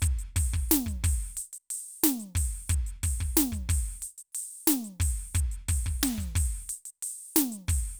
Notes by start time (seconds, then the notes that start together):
0.01 closed hi-hat, kick, hi-hat pedal
0.19 closed hi-hat
0.36 open hi-hat, kick
0.54 kick
0.69 closed hi-hat, snare, hi-hat pedal
0.86 closed hi-hat, kick
1.04 open hi-hat, kick
1.37 open hi-hat, hi-hat pedal
1.53 closed hi-hat
1.70 open hi-hat
2.03 open hi-hat, snare, hi-hat pedal
2.20 closed hi-hat
2.35 open hi-hat, kick
2.68 closed hi-hat, kick, hi-hat pedal
2.87 closed hi-hat
3.03 open hi-hat, kick
3.21 kick
3.35 closed hi-hat, snare, hi-hat pedal
3.52 closed hi-hat, kick
3.69 open hi-hat, kick
4.02 open hi-hat, hi-hat pedal
4.18 closed hi-hat
4.32 open hi-hat, hi-hat pedal
4.67 closed hi-hat, snare, hi-hat pedal
4.84 closed hi-hat
5.00 open hi-hat, kick
5.34 closed hi-hat, kick, hi-hat pedal
5.52 closed hi-hat
5.69 open hi-hat, kick
5.86 kick
6.01 closed hi-hat, snare, hi-hat pedal
6.18 closed hi-hat, kick
6.36 open hi-hat, kick
6.69 open hi-hat, hi-hat pedal
6.85 closed hi-hat
7.03 open hi-hat
7.35 closed hi-hat, snare, hi-hat pedal
7.52 closed hi-hat
7.68 open hi-hat, kick, hi-hat pedal